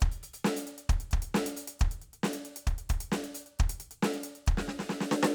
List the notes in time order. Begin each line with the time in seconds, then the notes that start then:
0.01 kick, closed hi-hat
0.12 closed hi-hat
0.23 closed hi-hat
0.34 closed hi-hat
0.45 snare
0.57 closed hi-hat
0.67 closed hi-hat
0.78 closed hi-hat
0.90 kick, closed hi-hat
1.12 kick, closed hi-hat
1.23 closed hi-hat
1.35 snare
1.47 closed hi-hat
1.57 closed hi-hat
1.68 closed hi-hat
1.80 kick, closed hi-hat
1.92 closed hi-hat
2.02 closed hi-hat
2.14 closed hi-hat
2.24 snare
2.34 closed hi-hat
2.45 closed hi-hat
2.57 closed hi-hat
2.67 kick, closed hi-hat
2.79 closed hi-hat
2.90 kick, closed hi-hat
3.01 closed hi-hat
3.12 snare
3.24 closed hi-hat
3.35 closed hi-hat
3.47 closed hi-hat
3.59 kick, closed hi-hat
3.70 closed hi-hat
3.80 closed hi-hat
3.91 closed hi-hat
4.03 snare
4.14 closed hi-hat
4.24 closed hi-hat
4.36 closed hi-hat
4.47 kick, closed hi-hat
4.58 snare
4.68 snare
4.80 snare
4.90 snare
5.01 snare
5.12 snare
5.23 snare